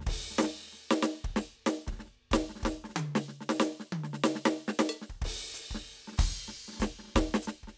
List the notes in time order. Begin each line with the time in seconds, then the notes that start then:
0.01 snare
0.07 kick, ride
0.31 snare
0.34 snare
0.36 snare
0.39 snare, hi-hat pedal
0.43 snare
0.56 snare
0.59 snare
0.61 snare
0.64 snare
0.66 snare
0.73 snare
0.91 snare
1.03 snare, hi-hat pedal
1.25 kick
1.36 snare
1.67 snare, hi-hat pedal
1.87 kick, snare
1.92 snare
1.96 snare
2.00 snare
2.32 kick, snare, hi-hat pedal
2.50 snare
2.56 snare
2.60 kick, snare
2.64 snare
2.85 snare
2.90 snare
2.95 snare, hi-hat pedal, high tom
3.16 snare
3.29 snare
3.41 snare
3.50 snare
3.60 snare, hi-hat pedal
3.80 snare
3.93 high tom
4.04 snare
4.14 snare
4.24 snare, hi-hat pedal
4.36 snare
4.46 snare
4.58 snare
4.68 snare
4.79 snare
4.90 hi-hat pedal, percussion
5.02 snare
5.10 kick
5.22 kick, ride
5.54 hi-hat pedal
5.71 kick, snare
6.08 snare
6.12 snare
6.18 kick, snare, hi-hat pedal, crash
6.22 snare
6.48 snare
6.68 snare
6.73 snare
6.76 snare
6.80 kick, snare, hi-hat pedal
6.82 snare
6.99 snare
7.04 snare
7.08 snare
7.12 snare
7.16 kick, snare
7.34 snare
7.42 hi-hat pedal
7.48 snare
7.63 kick
7.68 snare